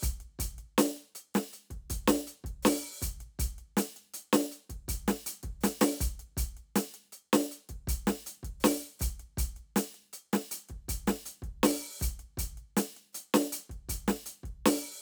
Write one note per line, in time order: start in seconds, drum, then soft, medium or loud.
0.01 closed hi-hat loud
0.01 kick medium
0.01 hi-hat pedal medium
0.20 closed hi-hat soft
0.39 closed hi-hat loud
0.39 kick medium
0.58 closed hi-hat soft
0.78 closed hi-hat loud
0.78 snare loud
0.96 closed hi-hat soft
1.15 closed hi-hat medium
1.34 snare loud
1.34 closed hi-hat medium
1.53 closed hi-hat medium
1.70 kick soft
1.70 closed hi-hat soft
1.90 closed hi-hat loud
1.90 kick medium
2.08 snare loud
2.27 closed hi-hat medium
2.44 kick medium
2.44 closed hi-hat medium
2.62 open hi-hat loud
2.62 snare loud
2.62 hi-hat pedal medium
3.01 closed hi-hat loud
3.01 kick medium
3.01 hi-hat pedal medium
3.20 closed hi-hat soft
3.39 closed hi-hat loud
3.39 kick medium
3.58 closed hi-hat soft
3.77 open hi-hat loud
3.77 snare loud
3.96 closed hi-hat medium
4.14 closed hi-hat loud
4.33 snare loud
4.33 closed hi-hat medium
4.51 closed hi-hat medium
4.70 kick soft
4.70 closed hi-hat medium
4.88 closed hi-hat loud
4.88 kick medium
5.08 snare loud
5.08 closed hi-hat medium
5.26 closed hi-hat loud
5.43 kick medium
5.43 closed hi-hat medium
5.61 closed hi-hat loud
5.61 snare loud
5.61 hi-hat pedal soft
5.81 snare loud
5.81 open hi-hat loud
5.99 closed hi-hat loud
5.99 kick medium
5.99 hi-hat pedal soft
6.19 closed hi-hat medium
6.37 closed hi-hat loud
6.37 kick medium
6.57 closed hi-hat soft
6.76 closed hi-hat loud
6.76 snare loud
6.94 closed hi-hat medium
7.12 closed hi-hat medium
7.33 snare loud
7.33 closed hi-hat medium
7.51 closed hi-hat medium
7.69 kick soft
7.69 closed hi-hat medium
7.87 closed hi-hat loud
7.87 kick medium
8.07 snare loud
8.26 closed hi-hat medium
8.43 kick medium
8.43 closed hi-hat medium
8.60 snare loud
8.60 hi-hat pedal soft
8.65 open hi-hat loud
8.99 closed hi-hat loud
8.99 kick medium
8.99 hi-hat pedal medium
9.20 closed hi-hat soft
9.37 closed hi-hat loud
9.37 kick medium
9.56 closed hi-hat soft
9.76 closed hi-hat loud
9.76 snare loud
9.94 closed hi-hat soft
10.13 closed hi-hat medium
10.33 snare loud
10.33 closed hi-hat medium
10.51 closed hi-hat loud
10.69 kick soft
10.69 closed hi-hat soft
10.88 closed hi-hat loud
10.88 kick medium
11.07 snare loud
11.07 closed hi-hat medium
11.26 closed hi-hat medium
11.42 kick medium
11.42 closed hi-hat soft
11.63 open hi-hat loud
11.63 snare loud
11.99 closed hi-hat loud
11.99 kick medium
11.99 hi-hat pedal medium
12.19 closed hi-hat soft
12.37 closed hi-hat loud
12.37 kick medium
12.57 closed hi-hat soft
12.77 closed hi-hat loud
12.77 snare loud
12.97 closed hi-hat soft
13.13 closed hi-hat loud
13.13 hi-hat pedal soft
13.34 snare loud
13.34 closed hi-hat soft
13.52 closed hi-hat loud
13.69 kick soft
13.69 closed hi-hat soft
13.89 closed hi-hat loud
13.89 kick medium
14.08 snare loud
14.26 closed hi-hat medium
14.43 kick medium
14.43 closed hi-hat soft
14.66 open hi-hat loud
14.66 snare loud